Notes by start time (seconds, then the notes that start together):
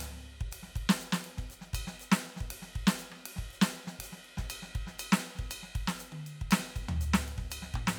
0.01 hi-hat pedal, ride
0.41 kick
0.52 hi-hat pedal, ride
0.63 snare
0.76 kick, ride
0.82 kick
0.90 snare
1.00 hi-hat pedal, ride
1.13 snare
1.25 ride
1.38 kick, snare
1.51 hi-hat pedal, ride
1.62 snare
1.74 kick, ride bell
1.79 kick
1.88 snare
2.00 hi-hat pedal, ride
2.12 snare
2.37 snare
2.41 kick
2.51 hi-hat pedal, ride
2.62 snare
2.76 kick, ride
2.87 snare
2.98 hi-hat pedal, ride
3.12 cross-stick
3.26 ride
3.36 kick, snare
3.51 hi-hat pedal, ride
3.62 snare
3.76 ride
3.88 snare
3.99 kick, ride
4.03 hi-hat pedal
4.13 snare
4.25 ride
4.38 kick, snare
4.50 hi-hat pedal, ride bell
4.63 snare
4.75 kick, ride
4.81 kick
4.87 snare
4.99 hi-hat pedal, ride bell
5.13 snare
5.19 snare
5.25 ride
5.36 kick, snare
5.51 hi-hat pedal, ride bell
5.63 snare
5.76 kick, ride
5.81 kick
5.88 snare
5.99 hi-hat pedal, ride
6.12 closed hi-hat, high tom
6.27 ride bell
6.42 kick
6.51 snare, hi-hat pedal, ride bell
6.59 snare
6.76 kick, ride bell
6.89 floor tom
7.01 hi-hat pedal, ride bell
7.14 snare
7.28 ride
7.38 kick, snare
7.51 hi-hat pedal, ride bell
7.63 snare
7.74 kick, mid tom
7.80 kick
7.88 snare